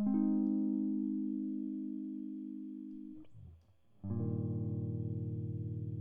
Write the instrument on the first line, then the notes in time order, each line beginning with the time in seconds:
electric guitar
0.00 G#3
0.07 C4
0.14 D#4
4.06 G2
4.12 A#2
4.21 D#3